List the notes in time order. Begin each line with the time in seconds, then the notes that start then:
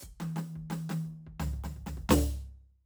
0.00 kick, hi-hat pedal
0.20 snare, high tom
0.36 snare, high tom
0.55 kick
0.70 snare, closed hi-hat, high tom
0.89 snare, high tom
1.04 kick
1.26 kick
1.40 snare, floor tom
1.53 kick
1.64 snare, floor tom
1.76 kick
1.86 snare, floor tom
1.97 kick
2.09 snare, floor tom